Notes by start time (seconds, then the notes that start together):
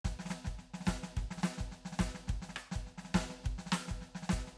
0.03 kick, snare
0.09 kick
0.19 snare
0.25 snare, hi-hat pedal
0.30 snare
0.44 kick, snare
0.58 snare
0.74 snare
0.80 snare
0.85 kick, snare, hi-hat pedal
1.03 snare
1.17 kick, snare
1.23 kick
1.31 snare
1.37 snare
1.42 snare, hi-hat pedal
1.58 kick, snare
1.72 snare
1.85 snare
1.92 snare
1.98 kick, snare, hi-hat pedal
2.14 snare
2.28 kick, snare
2.36 kick
2.42 snare
2.49 snare
2.56 cross-stick, hi-hat pedal
2.71 snare
2.75 kick
2.86 snare
2.98 snare
3.04 snare
3.10 snare
3.14 kick, hi-hat pedal
3.29 snare
3.44 kick, snare
3.51 kick
3.58 snare
3.66 snare
3.72 snare, hi-hat pedal
3.88 kick, snare
4.01 snare
4.15 snare
4.22 snare
4.29 kick, snare, hi-hat pedal
4.41 kick
4.47 snare